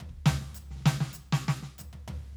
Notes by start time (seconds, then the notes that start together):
0.00 floor tom
0.09 kick
0.26 snare, floor tom
0.41 snare
0.55 percussion
0.71 snare
0.76 snare
0.81 snare
0.86 snare
1.01 snare
1.13 snare, percussion
1.32 snare
1.48 snare
1.63 snare
1.78 floor tom, percussion
1.93 floor tom
2.08 floor tom
2.15 snare
2.24 snare